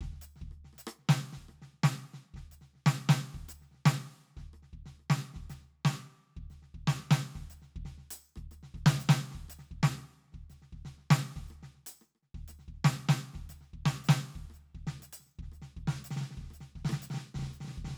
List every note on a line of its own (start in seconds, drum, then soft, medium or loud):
0.01 kick soft
0.01 cross-stick soft
0.01 snare soft
0.11 snare soft
0.21 percussion medium
0.36 snare soft
0.41 kick soft
0.47 snare soft
0.51 cross-stick soft
0.64 snare soft
0.73 cross-stick soft
0.73 snare soft
0.78 percussion medium
0.87 cross-stick medium
0.99 snare soft
1.09 snare loud
1.33 snare soft
1.37 kick soft
1.48 cross-stick soft
1.48 snare soft
1.62 snare soft
1.67 snare soft
1.73 snare soft
1.83 snare loud
1.98 snare soft
2.14 snare soft
2.34 kick soft
2.34 snare soft
2.51 snare soft
2.51 crash soft
2.51 percussion soft
2.61 snare soft
2.73 snare soft
2.75 snare soft
2.86 snare loud
2.99 snare soft
3.09 snare loud
3.13 cross-stick medium
3.20 snare soft
3.32 kick soft
3.32 snare soft
3.36 snare soft
3.48 cross-stick soft
3.48 snare soft
3.48 percussion medium
3.62 snare soft
3.71 snare soft
3.74 snare soft
3.86 cross-stick medium
3.86 snare loud
4.00 cross-stick soft
4.00 snare soft
4.14 snare soft
4.23 snare soft
4.37 kick soft
4.37 snare soft
4.53 cross-stick soft
4.62 snare soft
4.73 kick soft
4.86 snare soft
4.99 cross-stick soft
5.10 snare loud
5.16 snare soft
5.34 kick soft
5.34 snare soft
5.50 snare soft
5.50 percussion soft
5.61 snare soft
5.85 snare loud
5.90 snare soft
6.00 snare soft
6.25 snare soft
6.33 snare soft
6.36 kick soft
6.36 snare soft
6.50 snare soft
6.50 percussion soft
6.62 snare soft
6.74 kick soft
6.74 snare soft
6.87 snare medium
6.99 snare soft
7.11 snare loud
7.35 kick soft
7.35 snare soft
7.40 snare soft
7.50 snare soft
7.50 percussion soft
7.62 snare soft
7.74 kick soft
7.74 snare soft
7.85 snare soft
7.97 snare soft
8.11 percussion loud
8.36 kick soft
8.36 cross-stick soft
8.51 cross-stick soft
8.51 snare soft
8.51 percussion soft
8.63 snare soft
8.74 kick soft
8.74 cross-stick soft
8.74 snare soft
8.86 snare loud
8.90 cross-stick medium
8.98 snare soft
8.98 percussion medium
9.09 snare loud
9.13 cross-stick medium
9.31 kick soft
9.31 snare soft
9.48 cross-stick soft
9.48 snare soft
9.48 percussion medium
9.59 snare soft
9.70 kick soft
9.70 snare soft
9.83 snare loud
9.87 cross-stick soft
9.98 cross-stick soft
9.98 snare soft
10.22 snare soft
10.32 kick soft
10.32 snare soft
10.49 snare soft
10.49 percussion soft
10.62 snare soft
10.72 kick soft
10.72 snare soft
10.74 snare soft
10.85 snare soft
10.98 snare soft
11.10 snare loud
11.14 cross-stick medium
11.36 kick soft
11.36 snare soft
11.47 cross-stick soft
11.47 snare soft
11.47 percussion soft
11.63 snare soft
11.75 snare soft
11.86 percussion medium
12.01 cross-stick soft
12.15 cross-stick soft
12.23 snare soft
12.34 kick soft
12.34 snare soft
12.48 cross-stick soft
12.48 snare soft
12.48 percussion medium
12.68 kick soft
12.74 snare soft
12.84 snare loud
12.89 cross-stick soft
12.98 snare soft
13.09 snare loud
13.14 cross-stick soft
13.33 kick soft
13.33 snare soft
13.49 snare soft
13.49 percussion medium
13.61 snare soft
13.73 kick soft
13.73 snare soft
13.86 snare medium
13.98 snare soft
14.04 percussion medium
14.09 snare loud
14.15 cross-stick soft
14.24 snare soft
14.35 kick soft
14.44 snare soft
14.49 cross-stick soft
14.49 snare soft
14.49 percussion soft
14.54 percussion soft
14.75 kick soft
14.75 snare soft
14.87 snare medium
14.99 cross-stick soft
14.99 snare soft
14.99 percussion medium
15.13 percussion medium
15.20 snare soft
15.26 snare soft
15.39 kick soft
15.39 snare soft
15.49 cross-stick soft
15.49 snare soft
15.49 percussion soft
15.62 snare soft
15.76 kick soft
15.76 cross-stick soft
15.87 snare medium
15.99 cross-stick soft
15.99 snare soft
16.04 percussion medium
16.11 snare medium
16.16 snare medium
16.21 snare soft
16.26 snare soft
16.31 snare soft
16.35 kick soft
16.35 snare soft
16.38 snare soft
16.41 snare soft
16.44 snare soft
16.50 cross-stick soft
16.50 percussion soft
16.61 snare soft
16.75 kick soft
16.75 snare soft
16.85 snare medium
16.89 cross-stick medium
16.89 snare medium
16.96 snare soft
17.02 percussion medium
17.10 snare medium
17.14 snare medium
17.17 snare soft
17.34 kick soft
17.34 snare soft
17.39 snare soft
17.42 snare soft
17.47 cross-stick soft
17.47 snare soft
17.53 percussion soft
17.60 snare soft
17.64 snare soft
17.68 snare soft
17.71 snare soft
17.75 kick soft
17.75 cross-stick soft
17.84 snare soft
17.88 snare soft
17.91 snare soft
17.94 snare soft